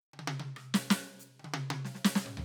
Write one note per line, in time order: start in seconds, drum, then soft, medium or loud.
0.13 high tom medium
0.19 high tom medium
0.27 high tom loud
0.40 high tom loud
0.56 cross-stick medium
0.74 snare loud
0.90 snare loud
1.19 hi-hat pedal medium
1.39 high tom medium
1.44 high tom medium
1.54 high tom loud
1.70 high tom loud
1.85 snare medium
1.95 snare medium
2.04 snare loud
2.15 snare loud
2.26 mid tom medium
2.37 floor tom loud